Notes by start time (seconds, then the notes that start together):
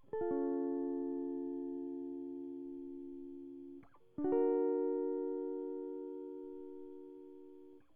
0.14 A4
0.22 F4
0.32 C#4
4.19 D4
4.25 F#4
4.33 A#4